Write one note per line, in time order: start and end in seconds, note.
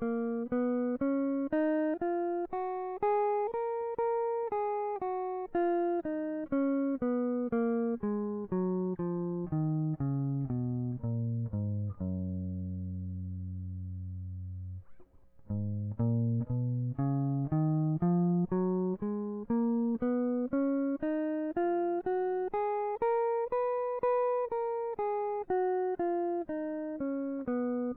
0.03 0.49 A#3
0.53 0.99 B3
1.02 1.51 C#4
1.53 1.99 D#4
2.02 2.48 F4
2.53 3.00 F#4
3.03 3.54 G#4
3.54 3.97 A#4
3.99 4.51 A#4
4.52 5.00 G#4
5.02 5.48 F#4
5.55 6.04 F4
6.05 6.47 D#4
6.53 6.99 C#4
7.02 7.50 B3
7.53 7.98 A#3
8.04 8.49 G#3
8.53 8.97 F#3
9.00 9.49 F3
9.53 9.98 D#3
10.02 10.49 C#3
10.52 11.00 B2
11.06 11.50 A#2
11.53 12.03 G#2
12.03 14.81 F#2
15.53 15.96 G#2
16.01 16.47 A#2
16.49 16.86 B2
17.00 17.51 C#3
17.53 18.01 D#3
18.03 18.48 F3
18.52 18.98 F#3
19.03 19.47 G#3
19.51 19.99 A#3
20.03 20.49 B3
20.54 20.99 C#4
21.03 21.55 D#4
21.57 22.03 F4
22.07 22.50 F#4
22.54 23.00 G#4
23.02 23.51 A#4
23.52 24.01 B4
24.03 24.49 B4
24.52 24.97 A#4
24.99 25.45 G#4
25.50 25.97 F#4
26.00 26.45 F4
26.49 27.04 D#4
27.01 27.47 C#4
27.48 27.95 B3